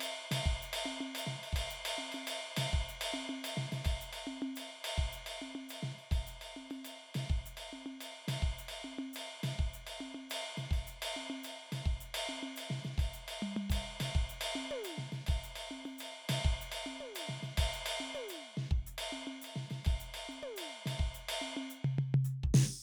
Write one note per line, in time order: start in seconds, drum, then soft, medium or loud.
0.01 hi-hat pedal loud
0.01 ride loud
0.32 snare medium
0.32 ride loud
0.46 kick medium
0.62 hi-hat pedal loud
0.73 ride loud
0.86 high tom medium
1.01 high tom medium
1.15 hi-hat pedal loud
1.15 ride loud
1.27 snare soft
1.44 ride medium
1.53 kick soft
1.53 ride loud
1.70 hi-hat pedal loud
1.85 ride loud
1.99 high tom medium
2.12 high tom medium
2.12 ride medium
2.27 hi-hat pedal loud
2.27 ride loud
2.57 snare medium
2.57 ride loud
2.73 kick soft
2.89 hi-hat pedal loud
3.01 ride loud
3.14 high tom medium
3.30 high tom medium
3.45 hi-hat pedal loud
3.45 ride loud
3.57 snare medium
3.72 snare medium
3.72 ride medium
3.85 kick soft
3.85 ride medium
4.01 hi-hat pedal loud
4.13 ride bell medium
4.27 high tom medium
4.42 high tom medium
4.56 hi-hat pedal loud
4.56 ride bell medium
4.85 ride bell loud
4.98 kick soft
5.11 kick soft
5.11 hi-hat pedal loud
5.27 ride bell medium
5.42 high tom medium
5.55 high tom medium
5.69 hi-hat pedal loud
5.69 ride bell medium
5.83 snare medium
5.99 ride bell soft
6.12 kick medium
6.12 ride bell medium
6.27 hi-hat pedal medium
6.42 ride bell medium
6.57 high tom medium
6.71 high tom medium
6.71 ride soft
6.85 hi-hat pedal loud
6.85 ride bell medium
7.15 snare medium
7.15 ride medium
7.30 kick soft
7.46 hi-hat pedal loud
7.57 ride bell medium
7.73 high tom medium
7.86 high tom medium
8.01 hi-hat pedal loud
8.01 ride bell medium
8.28 snare medium
8.28 ride bell loud
8.43 kick soft
8.59 hi-hat pedal loud
8.69 ride bell medium
8.85 high tom medium
8.99 high tom medium
9.14 hi-hat pedal loud
9.14 ride bell medium
9.44 snare medium
9.44 ride bell medium
9.59 kick soft
9.74 hi-hat pedal loud
9.87 ride bell medium
10.01 high tom medium
10.15 high tom medium
10.30 hi-hat pedal loud
10.30 ride bell loud
10.58 snare soft
10.58 ride bell soft
10.71 kick soft
10.71 ride medium
10.87 hi-hat pedal loud
11.02 ride bell loud
11.17 high tom medium
11.30 high tom medium
11.44 hi-hat pedal loud
11.44 ride bell medium
11.72 snare medium
11.72 ride bell medium
11.86 kick soft
12.01 hi-hat pedal loud
12.15 ride loud
12.29 high tom medium
12.43 high tom medium
12.56 hi-hat pedal loud
12.56 ride bell medium
12.71 snare medium
12.84 snare soft
12.84 ride bell soft
12.98 kick medium
12.98 ride bell medium
13.14 hi-hat pedal loud
13.28 ride bell medium
13.43 mid tom medium
13.57 mid tom loud
13.70 kick soft
13.70 hi-hat pedal loud
13.70 ride bell loud
14.00 snare medium
14.00 ride loud
14.15 kick medium
14.30 hi-hat pedal loud
14.41 ride loud
14.56 high tom medium
14.71 high tom medium
14.84 hi-hat pedal loud
14.84 ride bell medium
14.98 snare soft
15.12 snare soft
15.12 ride bell soft
15.27 kick medium
15.27 ride bell medium
15.44 hi-hat pedal loud
15.56 ride bell medium
15.71 high tom medium
15.85 open hi-hat soft
15.85 high tom medium
15.85 ride bell soft
15.99 hi-hat pedal loud
15.99 ride bell medium
16.29 snare medium
16.29 hi-hat pedal soft
16.29 ride loud
16.45 kick medium
16.61 hi-hat pedal loud
16.72 ride bell loud
16.87 high tom medium
17.00 high tom medium
17.15 hi-hat pedal loud
17.15 ride bell loud
17.29 snare soft
17.43 snare soft
17.43 ride soft
17.58 kick medium
17.58 ride loud
17.74 hi-hat pedal loud
17.86 ride loud
18.01 high tom medium
18.15 high tom medium
18.15 ride soft
18.29 hi-hat pedal loud
18.29 ride bell medium
18.57 snare medium
18.71 kick medium
18.87 hi-hat pedal loud
18.98 ride bell loud
19.13 high tom medium
19.27 high tom medium
19.42 hi-hat pedal loud
19.42 ride bell medium
19.56 snare soft
19.70 snare soft
19.70 ride soft
19.85 kick medium
19.85 ride bell medium
20.00 hi-hat pedal loud
20.14 ride bell medium
20.29 hi-hat pedal soft
20.29 high tom medium
20.43 high tom medium
20.57 hi-hat pedal loud
20.57 ride bell medium
20.86 snare medium
20.86 ride medium
21.00 kick soft
21.15 hi-hat pedal loud
21.29 ride loud
21.42 high tom medium
21.57 high tom medium
21.70 hi-hat pedal loud
21.85 floor tom loud
21.99 floor tom loud
22.15 floor tom loud
22.25 hi-hat pedal loud
22.44 kick soft
22.54 snare loud
22.54 crash loud